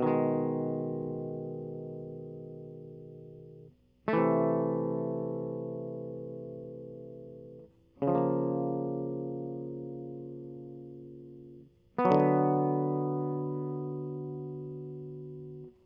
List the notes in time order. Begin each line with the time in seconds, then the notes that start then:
0.00 B2 D#3
0.07 G#3
4.08 A3
4.14 E3
4.19 C3
8.03 C#3
8.08 F3
8.15 A#3
11.99 B3
12.05 F#3
12.11 D3
12.17 A2